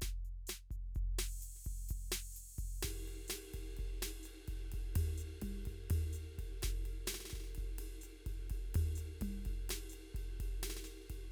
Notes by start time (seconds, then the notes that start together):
0.01 closed hi-hat, kick, snare
0.08 kick
0.25 closed hi-hat
0.47 closed hi-hat, snare, hi-hat pedal
0.71 closed hi-hat, kick
0.76 kick
0.95 kick, closed hi-hat
1.18 snare, crash
1.41 closed hi-hat, hi-hat pedal
1.56 snare
1.64 closed hi-hat, kick
1.72 kick
1.89 closed hi-hat, kick
1.96 kick
2.12 snare, crash
2.32 closed hi-hat, hi-hat pedal
2.58 closed hi-hat, kick
2.64 kick
2.82 kick, snare, ride
2.90 kick
3.07 ride
3.28 snare, hi-hat pedal, ride
3.54 kick, ride
3.59 kick
3.77 kick, ride
3.84 kick
4.02 snare, ride
4.23 hi-hat pedal, ride
4.48 kick, ride
4.54 kick
4.72 kick, ride
4.79 kick
4.95 floor tom, ride
5.18 hi-hat pedal, ride
5.42 kick, mid tom, ride
5.65 kick, ride
5.73 kick
5.90 floor tom, ride
6.13 hi-hat pedal, ride
6.38 kick, ride
6.44 kick
6.62 kick, snare, ride
6.69 kick
6.85 ride
7.07 snare, hi-hat pedal, ride
7.14 snare
7.20 snare
7.25 snare
7.30 kick, snare
7.35 kick, snare
7.40 snare
7.44 snare
7.47 snare
7.50 snare
7.53 snare, ride
7.56 snare
7.58 kick, snare
7.63 kick
7.78 ride
8.01 hi-hat pedal, ride
8.26 kick, ride, floor tom
8.32 kick
8.50 kick, ride
8.74 floor tom, ride
8.95 hi-hat pedal, ride
9.21 kick, mid tom, ride
9.27 kick
9.45 kick, ride
9.52 kick
9.69 snare, ride
9.89 hi-hat pedal, ride
10.14 kick, ride
10.20 kick
10.40 kick, ride
10.63 snare, ride
10.70 snare
10.76 snare
10.84 snare, hi-hat pedal, ride
10.91 snare
10.97 snare
11.01 snare
11.06 kick, snare, ride
11.11 snare
11.15 kick, snare